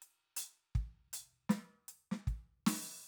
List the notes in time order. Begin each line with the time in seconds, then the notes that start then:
0.01 closed hi-hat
0.37 closed hi-hat
0.75 kick, closed hi-hat
1.13 closed hi-hat
1.49 snare, closed hi-hat
1.88 closed hi-hat
2.11 snare
2.27 kick, closed hi-hat
2.67 open hi-hat, snare